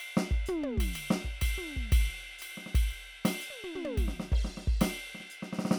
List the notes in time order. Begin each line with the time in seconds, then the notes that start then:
0.01 ride
0.18 snare
0.32 kick
0.47 floor tom, hi-hat pedal
0.64 high tom
0.78 kick, ride
0.94 hi-hat pedal, ride
1.11 snare
1.25 kick
1.42 kick, hi-hat pedal, ride
1.58 floor tom
1.77 kick
1.93 kick, ride
2.40 hi-hat pedal, ride
2.58 snare
2.67 snare
2.75 kick, ride
2.91 ride
3.26 snare, ride
3.41 hi-hat pedal, ride
3.51 high tom
3.64 floor tom
3.76 floor tom
3.85 high tom
3.98 kick, ride
4.09 snare
4.21 snare
4.33 kick, crash
4.45 snare
4.58 snare
4.68 kick
4.82 snare, ride
5.16 snare
5.21 snare
5.31 hi-hat pedal
5.43 snare
5.54 snare
5.59 snare
5.66 snare
5.72 snare